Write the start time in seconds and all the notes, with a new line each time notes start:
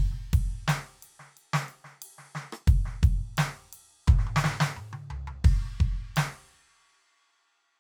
0.12 high tom
0.34 kick, ride
0.68 snare, hi-hat pedal, ride
1.03 ride
1.20 snare
1.37 ride
1.54 snare
1.69 ride
1.85 snare
2.03 ride
2.19 snare
2.36 snare
2.53 cross-stick
2.68 kick, ride
2.86 snare
3.04 kick, ride
3.38 snare, ride
3.73 ride
4.08 kick, mid tom
4.19 snare
4.27 mid tom
4.37 snare
4.45 snare
4.61 snare
4.77 mid tom
4.93 high tom
5.11 floor tom
5.28 floor tom
5.45 kick, crash
5.81 kick
6.17 snare, ride